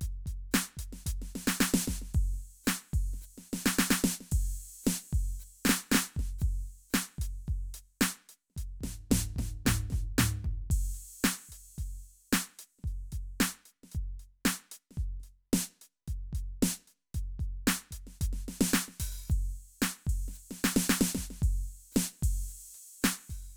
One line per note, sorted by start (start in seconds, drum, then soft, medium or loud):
0.01 closed hi-hat medium
0.01 kick soft
0.26 closed hi-hat medium
0.26 kick soft
0.51 snare loud
0.51 hi-hat pedal medium
0.77 closed hi-hat medium
0.77 kick soft
0.93 snare soft
1.06 closed hi-hat loud
1.06 kick soft
1.22 snare soft
1.35 snare medium
1.47 snare loud
1.60 snare loud
1.60 hi-hat pedal medium
1.74 snare loud
1.87 kick soft
1.87 snare medium
2.02 snare soft
2.14 kick medium
2.14 crash medium
2.33 snare soft
2.33 open hi-hat soft
2.64 snare loud
2.64 hi-hat pedal medium
2.93 kick medium
2.93 crash medium
3.13 snare soft
3.21 hi-hat pedal medium
3.38 snare soft
3.53 snare medium
3.66 snare loud
3.78 snare loud
3.78 hi-hat pedal medium
3.90 snare loud
4.04 snare loud
4.20 snare soft
4.31 kick medium
4.31 hi-hat pedal soft
4.31 crash loud
4.83 snare loud
4.83 hi-hat pedal medium
5.13 kick medium
5.13 crash medium
5.39 hi-hat pedal medium
5.65 snare loud
5.69 snare loud
5.91 snare loud
5.91 hi-hat pedal medium
5.94 snare loud
6.16 kick medium
6.16 snare soft
6.39 kick medium
6.39 hi-hat pedal medium
6.39 crash medium
6.67 closed hi-hat soft
6.90 hi-hat pedal soft
6.94 snare loud
7.18 closed hi-hat medium
7.18 kick soft
7.47 kick medium
7.47 closed hi-hat soft
7.74 closed hi-hat medium
8.01 snare loud
8.29 closed hi-hat medium
8.50 snare soft
8.56 closed hi-hat medium
8.56 kick soft
8.81 kick soft
8.81 snare medium
8.85 floor tom soft
9.11 kick soft
9.11 snare loud
9.11 floor tom medium
9.36 kick soft
9.36 snare medium
9.36 floor tom medium
9.66 kick soft
9.66 snare loud
9.66 floor tom loud
9.90 kick medium
9.90 snare soft
9.90 floor tom soft
10.18 snare loud
10.18 floor tom loud
10.18 hi-hat pedal medium
10.44 kick medium
10.44 floor tom soft
10.70 kick medium
10.70 crash loud
10.94 closed hi-hat soft
11.24 snare loud
11.49 closed hi-hat medium
11.49 kick soft
11.78 closed hi-hat medium
11.78 kick soft
12.02 closed hi-hat soft
12.33 snare loud
12.59 closed hi-hat medium
12.79 snare soft
12.84 closed hi-hat soft
12.84 kick soft
13.12 closed hi-hat medium
13.12 kick soft
13.40 snare loud
13.65 closed hi-hat medium
13.83 snare soft
13.92 closed hi-hat medium
13.92 kick soft
14.19 closed hi-hat soft
14.45 snare loud
14.71 closed hi-hat medium
14.91 snare soft
14.97 kick medium
14.97 closed hi-hat soft
15.20 snare soft
15.20 closed hi-hat soft
15.53 snare loud
15.81 closed hi-hat medium
16.08 closed hi-hat medium
16.08 kick soft
16.33 closed hi-hat medium
16.33 kick soft
16.62 snare loud
16.87 closed hi-hat soft
17.14 closed hi-hat medium
17.14 kick soft
17.39 kick soft
17.39 closed hi-hat soft
17.67 snare loud
17.91 closed hi-hat medium
17.91 kick soft
18.07 snare soft
18.21 closed hi-hat loud
18.21 kick medium
18.33 snare soft
18.48 snare medium
18.61 snare loud
18.73 snare loud
18.88 snare soft
19.00 open hi-hat loud
19.00 kick soft
19.28 kick medium
19.28 hi-hat pedal medium
19.28 crash medium
19.82 snare loud
20.07 kick medium
20.07 crash medium
20.28 snare soft
20.33 hi-hat pedal medium
20.51 snare soft
20.64 snare loud
20.76 snare loud
20.88 snare loud
20.88 hi-hat pedal soft
21.01 snare loud
21.15 kick soft
21.15 snare medium
21.30 snare soft
21.42 kick medium
21.42 crash medium
21.92 hi-hat pedal medium
21.96 snare loud
22.23 kick medium
22.23 crash loud
22.48 hi-hat pedal soft
22.74 closed hi-hat soft
23.02 closed hi-hat loud
23.02 snare loud
23.02 hi-hat pedal medium
23.29 open hi-hat soft
23.29 kick soft